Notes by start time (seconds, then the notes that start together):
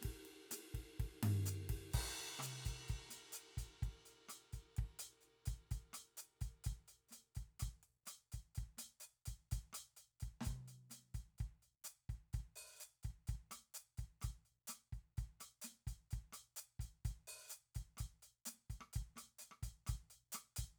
0.01 kick, snare, ride
0.10 kick
0.25 ride
0.51 snare, hi-hat pedal, ride
0.74 kick, ride
0.80 kick
1.00 kick, ride
1.05 kick
1.23 floor tom, ride
1.46 hi-hat pedal
1.69 kick, ride
1.75 kick
1.91 kick, hi-hat pedal, crash
2.09 crash
2.39 open hi-hat, cross-stick, hi-hat pedal, mid tom
2.65 closed hi-hat, kick
2.71 kick
2.88 closed hi-hat, kick
2.95 kick
3.09 closed hi-hat, snare
3.32 closed hi-hat, hi-hat pedal
3.57 closed hi-hat, kick
3.63 kick
3.82 kick, closed hi-hat
3.88 kick
4.05 closed hi-hat
4.28 closed hi-hat, cross-stick, snare
4.53 closed hi-hat, kick
4.76 kick, closed hi-hat
4.84 kick
4.99 open hi-hat
5.21 closed hi-hat, hi-hat pedal
5.45 closed hi-hat, kick
5.53 kick
5.71 closed hi-hat, kick
5.77 kick
5.93 closed hi-hat, cross-stick, snare
6.17 hi-hat pedal
6.41 closed hi-hat, kick
6.47 kick
6.64 closed hi-hat, kick
6.72 kick
6.88 closed hi-hat
7.08 closed hi-hat, snare, hi-hat pedal, crash
7.35 closed hi-hat, kick
7.42 kick
7.59 closed hi-hat, kick, cross-stick
7.68 kick
7.83 closed hi-hat
8.05 closed hi-hat, cross-stick, snare, hi-hat pedal
8.32 closed hi-hat, kick
8.55 closed hi-hat, kick
8.63 kick
8.77 open hi-hat, snare
9.00 closed hi-hat, hi-hat pedal
9.25 closed hi-hat, kick
9.51 closed hi-hat, kick
9.58 kick
9.73 closed hi-hat, cross-stick, snare
9.97 closed hi-hat
10.20 closed hi-hat, kick
10.28 kick
10.41 closed hi-hat, snare, mid tom
10.46 kick
10.52 kick
10.68 closed hi-hat
10.90 closed hi-hat, snare, hi-hat pedal
11.14 closed hi-hat, kick
11.20 kick
11.38 closed hi-hat, kick
11.45 kick
11.62 closed hi-hat
11.84 cross-stick, hi-hat pedal
12.09 closed hi-hat, kick
12.14 kick
12.33 closed hi-hat, kick
12.39 kick
12.56 open hi-hat
12.80 open hi-hat, hi-hat pedal
13.03 closed hi-hat, kick
13.10 kick
13.27 closed hi-hat, kick
13.34 kick
13.51 closed hi-hat, cross-stick, snare
13.74 hi-hat pedal
13.97 closed hi-hat, kick
14.04 kick
14.21 closed hi-hat, kick, cross-stick, hi-hat pedal
14.30 kick
14.45 closed hi-hat
14.67 closed hi-hat, cross-stick, snare, hi-hat pedal
14.92 closed hi-hat, kick
15.17 closed hi-hat, kick
15.23 kick
15.40 closed hi-hat, cross-stick
15.62 closed hi-hat, snare, hi-hat pedal
15.87 closed hi-hat, kick
15.92 kick
16.11 closed hi-hat, kick
16.18 kick
16.32 closed hi-hat, cross-stick
16.56 hi-hat pedal
16.79 closed hi-hat, kick
16.85 kick
17.05 closed hi-hat, kick
17.11 kick
17.27 open hi-hat
17.50 closed hi-hat, hi-hat pedal
17.75 closed hi-hat, kick
17.81 kick
17.97 closed hi-hat, kick, cross-stick
18.05 kick
18.22 closed hi-hat
18.45 snare, hi-hat pedal
18.70 closed hi-hat, kick, snare
18.80 cross-stick, snare
18.93 closed hi-hat, kick
19.01 kick
19.16 closed hi-hat, cross-stick, snare
19.38 closed hi-hat, snare, hi-hat pedal
19.51 cross-stick, snare
19.63 closed hi-hat, kick
19.68 kick
19.86 closed hi-hat, kick, cross-stick, snare
19.95 kick
20.10 open hi-hat
20.32 closed hi-hat, cross-stick, snare, hi-hat pedal
20.56 closed hi-hat, kick
20.64 kick